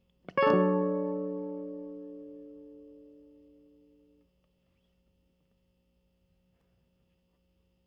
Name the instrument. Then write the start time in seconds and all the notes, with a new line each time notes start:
electric guitar
0.38 C#5
0.43 A4
0.47 D4
0.54 F#3